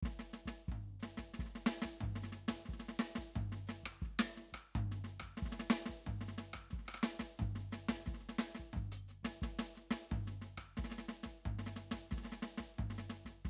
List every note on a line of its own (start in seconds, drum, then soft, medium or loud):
0.02 kick soft
0.02 snare soft
0.19 snare soft
0.29 hi-hat pedal medium
0.33 snare soft
0.46 kick soft
0.46 snare medium
0.68 kick soft
0.68 floor tom medium
0.99 snare medium
0.99 hi-hat pedal medium
1.17 kick soft
1.17 snare soft
1.34 snare soft
1.39 kick soft
1.39 snare soft
1.46 snare soft
1.55 snare soft
1.66 snare loud
1.66 hi-hat pedal medium
1.82 kick soft
1.82 snare medium
2.00 kick soft
2.00 floor tom medium
2.15 snare soft
2.23 snare soft
2.32 snare soft
2.32 hi-hat pedal soft
2.48 kick soft
2.48 snare medium
2.65 kick soft
2.65 snare soft
2.73 snare soft
2.79 snare soft
2.88 snare soft
2.99 snare medium
2.99 hi-hat pedal soft
3.15 kick soft
3.15 snare medium
3.35 kick soft
3.35 floor tom medium
3.52 snare soft
3.67 snare medium
3.67 hi-hat pedal medium
3.83 kick soft
3.83 cross-stick medium
4.02 kick soft
4.02 snare soft
4.19 snare loud
4.34 snare soft
4.34 hi-hat pedal medium
4.53 kick soft
4.53 cross-stick medium
4.75 kick soft
4.75 floor tom medium
4.91 snare soft
5.04 snare soft
5.04 hi-hat pedal soft
5.20 kick soft
5.20 cross-stick medium
5.37 snare soft
5.42 kick soft
5.42 snare soft
5.52 snare soft
5.59 snare medium
5.70 snare loud
5.70 hi-hat pedal medium
5.86 kick soft
5.86 snare medium
6.06 kick soft
6.06 floor tom medium
6.21 snare soft
6.28 snare soft
6.38 snare medium
6.38 hi-hat pedal soft
6.53 kick soft
6.53 cross-stick medium
6.70 kick soft
6.70 snare soft
6.79 snare soft
6.85 cross-stick medium
6.85 snare soft
6.94 cross-stick medium
6.97 cross-stick soft
7.03 snare medium
7.03 hi-hat pedal soft
7.19 kick soft
7.19 snare medium
7.39 kick soft
7.39 floor tom medium
7.55 snare soft
7.71 snare medium
7.71 hi-hat pedal medium
7.88 kick soft
7.88 snare medium
8.06 kick soft
8.06 snare soft
8.14 snare soft
8.20 snare soft
8.29 snare soft
8.38 snare medium
8.38 hi-hat pedal medium
8.54 snare soft
8.59 kick soft
8.73 kick soft
8.73 floor tom medium
8.92 closed hi-hat medium
9.08 snare soft
9.08 hi-hat pedal medium
9.23 kick soft
9.23 snare medium
9.42 kick soft
9.42 snare soft
9.59 snare medium
9.75 snare soft
9.75 hi-hat pedal medium
9.90 kick soft
9.90 snare medium
10.11 kick soft
10.11 floor tom medium
10.27 snare soft
10.41 snare soft
10.41 hi-hat pedal medium
10.57 kick soft
10.57 cross-stick medium
10.77 kick soft
10.77 snare soft
10.84 snare soft
10.89 snare soft
10.91 snare soft
10.98 snare soft
11.08 snare medium
11.08 hi-hat pedal soft
11.23 kick soft
11.23 snare soft
11.45 kick soft
11.45 floor tom medium
11.59 snare soft
11.66 snare soft
11.76 snare soft
11.76 hi-hat pedal soft
11.91 kick soft
11.91 snare medium
12.11 kick soft
12.11 snare soft
12.17 snare soft
12.23 snare soft
12.32 snare soft
12.42 snare medium
12.42 hi-hat pedal soft
12.57 kick soft
12.57 snare medium
12.78 kick soft
12.78 floor tom medium
12.90 snare soft
12.98 snare soft
13.09 snare soft
13.09 hi-hat pedal soft
13.25 kick soft
13.25 snare soft
13.45 kick soft
13.45 snare soft